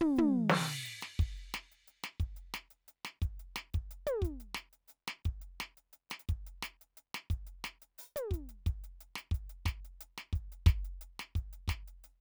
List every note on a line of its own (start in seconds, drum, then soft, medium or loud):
0.01 floor tom loud
0.16 floor tom loud
0.16 hi-hat pedal medium
0.50 snare loud
0.50 hi-hat pedal medium
0.50 crash loud
0.86 closed hi-hat medium
1.02 snare medium
1.02 closed hi-hat soft
1.20 kick medium
1.20 closed hi-hat soft
1.38 closed hi-hat soft
1.55 snare medium
1.55 closed hi-hat medium
1.72 closed hi-hat soft
1.88 closed hi-hat soft
2.04 snare medium
2.04 closed hi-hat medium
2.20 kick medium
2.20 closed hi-hat soft
2.37 closed hi-hat soft
2.55 snare medium
2.55 closed hi-hat medium
2.71 closed hi-hat soft
2.89 closed hi-hat medium
3.06 snare medium
3.06 closed hi-hat soft
3.22 kick medium
3.22 closed hi-hat soft
3.40 closed hi-hat soft
3.57 snare medium
3.57 closed hi-hat medium
3.74 kick medium
3.74 closed hi-hat soft
3.92 closed hi-hat medium
4.07 closed hi-hat medium
4.07 high tom loud
4.23 kick medium
4.23 closed hi-hat medium
4.41 closed hi-hat soft
4.55 snare medium
4.55 closed hi-hat medium
4.74 closed hi-hat soft
4.88 closed hi-hat soft
4.88 hi-hat pedal medium
5.08 snare medium
5.08 closed hi-hat soft
5.25 kick medium
5.25 closed hi-hat soft
5.42 closed hi-hat soft
5.61 snare medium
5.61 closed hi-hat medium
5.78 closed hi-hat soft
5.94 closed hi-hat medium
6.11 snare medium
6.11 closed hi-hat medium
6.20 closed hi-hat medium
6.29 kick medium
6.29 closed hi-hat medium
6.47 closed hi-hat soft
6.63 closed hi-hat medium
6.63 snare medium
6.82 closed hi-hat soft
6.98 closed hi-hat medium
7.15 snare medium
7.15 closed hi-hat medium
7.31 kick medium
7.31 closed hi-hat soft
7.47 closed hi-hat soft
7.65 snare medium
7.65 closed hi-hat medium
7.82 closed hi-hat soft
7.99 hi-hat pedal medium
7.99 open hi-hat medium
8.16 closed hi-hat medium
8.16 high tom medium
8.32 kick medium
8.32 closed hi-hat medium
8.50 closed hi-hat soft
8.67 kick medium
8.67 closed hi-hat medium
8.84 closed hi-hat soft
9.01 closed hi-hat medium
9.16 snare medium
9.16 closed hi-hat medium
9.32 kick medium
9.32 closed hi-hat soft
9.50 closed hi-hat soft
9.66 kick medium
9.66 snare medium
9.66 closed hi-hat medium
9.85 closed hi-hat soft
10.01 closed hi-hat medium
10.18 snare medium
10.18 closed hi-hat soft
10.33 kick medium
10.33 closed hi-hat soft
10.53 closed hi-hat soft
10.67 kick medium
10.67 snare medium
10.67 closed hi-hat medium
10.85 closed hi-hat soft
11.02 closed hi-hat medium
11.20 snare medium
11.20 closed hi-hat soft
11.36 kick medium
11.36 closed hi-hat soft
11.53 closed hi-hat soft
11.68 kick medium
11.68 snare medium
11.68 closed hi-hat medium
11.88 closed hi-hat soft
12.04 hi-hat pedal soft
12.04 open hi-hat medium